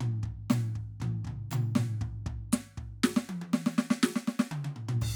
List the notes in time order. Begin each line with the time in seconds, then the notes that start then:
0.01 floor tom
0.24 kick, floor tom
0.50 snare, floor tom, percussion
0.76 kick, floor tom
1.01 kick, floor tom, high tom
1.25 kick, floor tom, mid tom
1.51 floor tom, mid tom, percussion
1.76 snare, floor tom
2.01 kick, floor tom
2.27 kick, floor tom
2.53 snare, floor tom
2.78 kick, floor tom
3.04 snare
3.17 snare
3.29 high tom
3.42 high tom
3.54 snare
3.67 snare
3.72 percussion
3.79 snare
3.91 snare
4.03 snare
4.16 snare
4.28 snare
4.40 snare
4.52 mid tom
4.65 mid tom
4.76 floor tom
4.89 floor tom
5.02 kick, crash